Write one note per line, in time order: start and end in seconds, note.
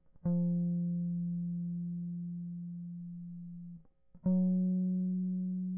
0.27 3.81 F3
4.27 5.78 F#3